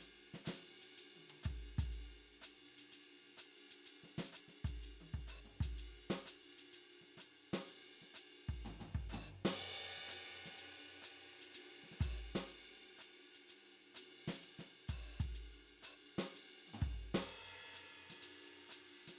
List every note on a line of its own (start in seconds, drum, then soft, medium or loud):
0.01 ride medium
0.34 snare soft
0.45 snare medium
0.45 hi-hat pedal loud
0.45 ride loud
0.82 ride medium
0.91 hi-hat pedal soft
0.98 ride medium
1.16 high tom soft
1.30 high tom soft
1.44 kick soft
1.44 hi-hat pedal medium
1.44 ride medium
1.79 kick soft
1.79 ride medium
1.93 ride soft
2.42 hi-hat pedal loud
2.42 ride medium
2.79 ride medium
2.89 hi-hat pedal soft
2.89 ride medium
3.38 hi-hat pedal medium
3.38 ride medium
3.71 ride medium
3.87 ride medium
4.04 snare soft
4.19 snare medium
4.33 hi-hat pedal loud
4.33 ride medium
4.49 snare soft
4.65 kick soft
4.65 ride medium
4.84 ride medium
5.01 high tom soft
5.14 kick soft
5.28 hi-hat pedal medium
5.28 ride medium
5.45 floor tom soft
5.61 kick soft
5.61 ride medium
5.75 hi-hat pedal soft
5.75 ride medium
6.11 snare medium
6.26 hi-hat pedal medium
6.26 ride medium
6.58 ride medium
6.70 hi-hat pedal soft
6.70 ride medium
7.02 snare soft
7.18 snare soft
7.18 hi-hat pedal medium
7.18 ride medium
7.54 snare medium
7.54 ride loud
7.64 hi-hat pedal soft
7.64 ride medium
8.02 snare soft
8.14 hi-hat pedal medium
8.14 ride medium
8.49 kick soft
8.59 hi-hat pedal soft
8.65 floor tom medium
8.65 high tom soft
8.80 floor tom medium
8.80 high tom soft
8.95 kick soft
9.10 floor tom medium
9.10 hi-hat pedal loud
9.10 high tom soft
9.45 snare loud
9.45 ride loud
9.55 hi-hat pedal soft
9.98 snare soft
10.09 hi-hat pedal loud
10.09 ride medium
10.46 snare soft
10.46 ride medium
10.54 hi-hat pedal soft
10.59 ride medium
11.02 hi-hat pedal medium
11.02 ride medium
11.42 ride medium
11.49 hi-hat pedal soft
11.55 ride medium
11.84 snare soft
11.92 snare soft
12.00 kick soft
12.00 hi-hat pedal medium
12.00 ride medium
12.36 snare medium
12.36 ride loud
12.47 hi-hat pedal soft
12.47 ride soft
12.99 hi-hat pedal medium
12.99 ride medium
13.35 ride medium
13.48 hi-hat pedal soft
13.48 ride medium
13.95 hi-hat pedal medium
13.95 ride loud
14.28 snare medium
14.28 ride medium
14.42 hi-hat pedal soft
14.42 ride medium
14.59 snare soft
14.89 kick soft
14.89 hi-hat pedal medium
14.89 ride medium
15.20 kick soft
15.20 ride medium
15.35 hi-hat pedal soft
15.35 ride medium
15.83 hi-hat pedal medium
15.83 ride medium
16.19 snare medium
16.19 ride loud
16.30 hi-hat pedal soft
16.36 ride medium
16.68 high tom soft
16.74 floor tom medium
16.81 kick soft
16.81 hi-hat pedal medium
17.15 snare medium
17.15 crash medium
17.26 hi-hat pedal soft
17.61 snare soft
17.74 hi-hat pedal medium
17.74 ride medium
18.10 snare soft
18.10 ride medium
18.22 hi-hat pedal soft
18.22 ride medium
18.69 hi-hat pedal medium
18.69 ride medium
19.08 snare soft
19.08 ride medium